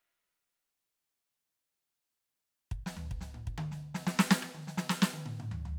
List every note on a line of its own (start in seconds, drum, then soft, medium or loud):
2.71 kick soft
2.86 snare medium
2.97 floor tom medium
3.11 kick soft
3.21 snare soft
3.34 mid tom medium
3.47 kick soft
3.58 high tom medium
3.71 snare soft
3.95 snare medium
4.07 snare medium
4.19 snare loud
4.31 snare loud
4.42 cross-stick medium
4.55 high tom medium
4.67 snare soft
4.89 snare loud
5.02 snare loud
5.14 high tom medium
5.26 mid tom medium
5.40 mid tom medium
5.51 floor tom medium
5.65 floor tom medium